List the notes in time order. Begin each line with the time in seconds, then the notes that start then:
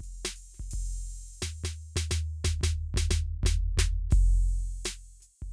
0.01 open hi-hat, kick
0.25 snare
0.36 open hi-hat
0.54 snare
0.60 kick, snare
0.71 open hi-hat, kick
1.42 snare, floor tom
1.64 snare, floor tom
1.96 snare, floor tom
2.11 snare, floor tom
2.44 kick, snare, floor tom
2.61 kick, snare, floor tom
2.94 kick, snare, floor tom
3.11 kick, snare, floor tom
3.43 kick, snare, floor tom
3.78 kick, snare, floor tom
4.10 kick, snare, crash
4.85 open hi-hat, snare, hi-hat pedal
5.20 closed hi-hat, snare
5.42 kick